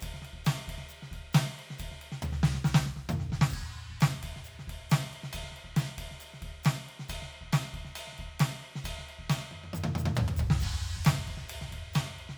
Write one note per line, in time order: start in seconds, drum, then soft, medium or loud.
0.01 kick soft
0.01 ride medium
0.01 percussion medium
0.10 kick soft
0.14 snare soft
0.22 snare soft
0.22 ride medium
0.34 kick soft
0.39 kick soft
0.45 snare loud
0.45 ride loud
0.45 percussion medium
0.68 kick soft
0.68 ride medium
0.75 kick soft
0.75 snare soft
0.89 ride soft
0.89 percussion medium
1.03 snare soft
1.12 kick soft
1.12 ride medium
1.18 kick soft
1.33 snare loud
1.33 ride loud
1.33 percussion medium
1.59 ride soft
1.71 snare soft
1.79 kick soft
1.79 ride medium
1.79 percussion medium
1.87 kick soft
1.92 snare soft
2.02 ride medium
2.12 snare medium
2.22 floor tom loud
2.22 percussion medium
2.33 snare medium
2.44 snare loud
2.55 snare medium
2.65 snare loud
2.65 percussion medium
2.75 snare loud
2.86 snare medium
2.97 snare soft
3.07 kick soft
3.07 mid tom loud
3.07 percussion medium
3.20 snare soft
3.30 kick soft
3.30 snare medium
3.36 kick soft
3.42 snare loud
3.51 kick medium
3.51 percussion medium
3.51 crash medium
3.60 kick soft
3.64 kick soft
3.64 snare soft
3.72 snare soft
3.91 kick soft
4.01 snare loud
4.01 ride loud
4.01 percussion medium
4.12 snare soft
4.23 kick soft
4.23 ride medium
4.30 kick soft
4.36 snare soft
4.45 ride soft
4.45 percussion medium
4.59 snare soft
4.68 kick soft
4.68 ride medium
4.74 kick soft
4.90 snare loud
4.90 ride loud
4.90 percussion medium
5.13 ride soft
5.24 snare medium
5.33 kick soft
5.33 ride bell loud
5.33 percussion medium
5.41 kick soft
5.41 snare soft
5.52 snare soft
5.57 ride soft
5.65 kick soft
5.77 snare loud
5.77 ride loud
5.77 percussion medium
5.98 kick soft
5.98 ride loud
6.04 kick soft
6.11 snare soft
6.20 ride medium
6.20 percussion medium
6.34 snare soft
6.42 kick soft
6.42 ride medium
6.49 kick soft
6.64 snare loud
6.64 ride loud
6.64 percussion medium
6.89 ride soft
7.00 snare soft
7.09 kick soft
7.09 ride bell loud
7.09 percussion medium
7.16 kick soft
7.23 snare soft
7.33 ride soft
7.42 kick soft
7.47 kick soft
7.53 snare loud
7.53 ride bell loud
7.53 percussion medium
7.74 kick soft
7.74 ride soft
7.80 kick soft
7.85 snare soft
7.96 ride bell loud
7.96 percussion medium
8.08 snare soft
8.13 snare soft
8.18 kick soft
8.18 ride soft
8.28 kick soft
8.40 snare loud
8.40 ride loud
8.40 percussion medium
8.65 ride soft
8.76 snare medium
8.85 kick soft
8.85 ride bell loud
8.85 percussion medium
8.91 kick soft
8.99 snare soft
9.09 ride soft
9.19 kick soft
9.30 snare medium
9.30 ride bell loud
9.30 percussion medium
9.38 snare soft
9.51 mid tom medium
9.64 mid tom soft
9.74 mid tom loud
9.74 percussion medium
9.84 mid tom loud
9.96 mid tom loud
9.96 percussion medium
10.06 mid tom loud
10.16 percussion soft
10.16 floor tom loud
10.28 floor tom loud
10.37 kick soft
10.37 percussion medium
10.37 floor tom medium
10.51 snare loud
10.60 kick medium
10.60 percussion medium
10.60 crash loud
10.74 snare soft
10.97 kick soft
11.05 snare loud
11.05 ride loud
11.05 percussion medium
11.13 snare soft
11.28 kick soft
11.28 ride soft
11.34 kick soft
11.34 snare soft
11.49 ride loud
11.49 percussion soft
11.62 snare soft
11.69 kick soft
11.69 snare soft
11.73 ride medium
11.77 kick soft
11.94 snare medium
11.94 ride bell loud
11.94 percussion medium
12.19 ride soft
12.29 snare soft